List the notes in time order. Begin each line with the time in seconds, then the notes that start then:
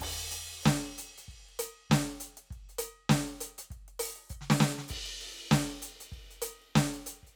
0.01 kick, crash
0.31 closed hi-hat
0.63 kick, snare, hi-hat pedal
0.98 closed hi-hat
1.18 closed hi-hat
1.28 kick, closed hi-hat
1.49 closed hi-hat
1.59 closed hi-hat
1.90 kick, snare
2.20 closed hi-hat
2.37 closed hi-hat
2.51 kick, closed hi-hat
2.69 closed hi-hat
2.79 closed hi-hat
3.10 kick, snare
3.26 closed hi-hat
3.41 closed hi-hat
3.58 closed hi-hat
3.71 kick, closed hi-hat
3.88 closed hi-hat
4.00 open hi-hat
4.16 open hi-hat
4.30 kick, hi-hat pedal
4.41 snare
4.50 snare
4.60 snare
4.78 snare
4.88 kick, hi-hat pedal, ride
5.06 closed hi-hat
5.21 crash
5.51 kick, snare
5.70 closed hi-hat
5.82 closed hi-hat
6.01 closed hi-hat
6.12 kick, closed hi-hat
6.31 closed hi-hat
6.42 closed hi-hat
6.62 closed hi-hat
6.76 kick, snare
6.93 closed hi-hat
7.06 closed hi-hat
7.23 closed hi-hat, kick